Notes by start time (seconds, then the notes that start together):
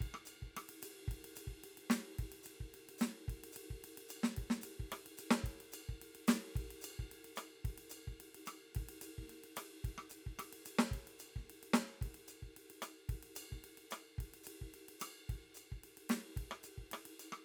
0.01 kick, ride
0.07 kick
0.14 cross-stick
0.26 hi-hat pedal, ride bell
0.43 kick
0.57 cross-stick, ride
0.70 ride
0.82 hi-hat pedal, ride
1.08 kick, ride
1.25 ride
1.36 hi-hat pedal, ride
1.48 kick
1.64 ride
1.78 ride
1.90 snare, hi-hat pedal, ride
2.14 snare
2.19 kick, ride
2.25 kick
2.32 ride
2.44 hi-hat pedal, ride
2.61 kick
2.75 ride
2.89 ride
2.99 snare, hi-hat pedal, ride
3.28 kick, snare, ride
3.39 snare
3.43 snare, ride
3.53 hi-hat pedal, ride
3.71 kick
3.85 ride
3.98 ride
4.09 hi-hat pedal, ride bell
4.24 snare
4.37 kick, ride
4.51 snare
4.62 hi-hat pedal, ride
4.80 kick
4.92 cross-stick, ride
5.06 ride
5.18 hi-hat pedal, ride
5.31 snare
5.44 kick, ride
5.58 snare, ride
5.62 snare
5.65 snare
5.67 snare
5.71 snare, hi-hat pedal, ride bell
5.89 kick
6.02 ride
6.15 ride
6.28 snare, hi-hat pedal, ride
6.52 kick, snare
6.57 snare, ride
6.66 snare
6.71 ride
6.82 hi-hat pedal, ride bell
7.00 kick
7.12 ride
7.25 ride
7.36 cross-stick, hi-hat pedal, ride bell
7.65 kick, snare, ride
7.78 ride
7.90 hi-hat pedal, ride bell
8.07 kick, snare
8.10 snare
8.21 ride
8.35 ride
8.46 cross-stick, hi-hat pedal, ride bell
8.72 kick, snare, ride
8.82 kick
8.89 ride
9.02 hi-hat pedal, ride
9.19 kick, snare
9.27 snare, ride
9.31 snare
9.44 ride
9.57 cross-stick, hi-hat pedal, ride
9.85 kick, ride
9.98 cross-stick
10.10 hi-hat pedal, ride
10.27 kick
10.39 cross-stick, ride
10.53 ride
10.66 hi-hat pedal, ride
10.79 snare
10.92 kick, ride
10.97 kick
11.07 snare, ride
11.20 hi-hat pedal, ride bell
11.36 kick, snare
11.42 snare
11.46 snare, ride
11.63 ride
11.74 snare, hi-hat pedal, ride bell
12.02 kick, snare, ride
12.07 kick
12.14 snare, ride
12.17 snare
12.28 hi-hat pedal, ride bell
12.43 kick
12.57 ride
12.71 ride
12.82 cross-stick, hi-hat pedal, ride bell
13.09 kick, snare, ride
13.15 kick
13.23 ride
13.36 hi-hat pedal, ride bell
13.50 kick, snare
13.53 snare
13.58 snare
13.65 ride
13.78 ride
13.91 cross-stick, hi-hat pedal, ride bell
14.18 kick, snare, ride
14.34 ride
14.44 hi-hat pedal, ride
14.62 kick
14.74 ride
14.89 ride
15.00 cross-stick, hi-hat pedal, ride bell
15.30 kick, ride
15.35 kick
15.55 hi-hat pedal, ride bell
15.72 kick
15.84 ride
15.98 ride
16.10 snare, hi-hat pedal, ride
16.37 kick, ride
16.42 kick
16.51 cross-stick
16.64 hi-hat pedal, ride
16.78 kick
16.92 cross-stick, ride
17.06 ride
17.20 hi-hat pedal, ride bell
17.33 cross-stick